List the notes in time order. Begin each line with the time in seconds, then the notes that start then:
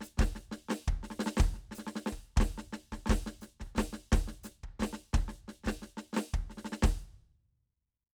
0.01 snare, hi-hat pedal
0.18 kick, snare
0.21 snare
0.35 snare
0.52 snare
0.69 snare
0.71 snare
0.88 kick
1.03 snare
1.11 snare
1.20 snare
1.26 snare
1.37 kick, snare
1.54 snare
1.71 snare, hi-hat pedal
1.79 snare
1.87 snare
1.96 snare
2.06 snare
2.13 kick
2.37 kick, snare
2.40 snare
2.58 snare
2.73 snare
2.92 kick, snare
3.06 kick, snare
3.11 snare
3.27 snare
3.41 snare, hi-hat pedal
3.60 kick, snare
3.75 kick, snare
3.78 snare
3.93 snare
4.12 kick, snare
4.28 snare
4.44 snare, hi-hat pedal
4.64 kick
4.80 kick, snare
4.83 snare
4.93 snare
5.14 kick, snare
5.28 snare
5.48 snare
5.64 kick, snare
5.68 snare
5.82 snare
5.98 snare
6.13 snare
6.17 snare
6.34 kick
6.50 snare
6.58 snare
6.65 snare
6.72 snare
6.83 kick, snare